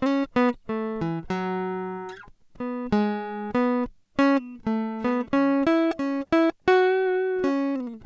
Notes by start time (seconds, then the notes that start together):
0.04 C#4
0.37 B3
0.70 A3
1.03 E3
1.31 F#3
2.62 B3
2.94 G#3
3.56 B3
4.20 C#4
4.38 B3
4.68 A3
5.06 B3
5.34 C#4
5.68 E4
6.00 C#4
6.33 E4
6.69 F#4
7.45 C#4